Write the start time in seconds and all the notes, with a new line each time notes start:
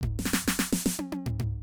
0.05 kick, floor tom
0.19 snare
0.25 snare
0.33 snare
0.44 kick, snare
0.59 snare
0.72 snare
0.86 snare
0.99 high tom
1.12 high tom
1.26 floor tom
1.40 floor tom
1.51 kick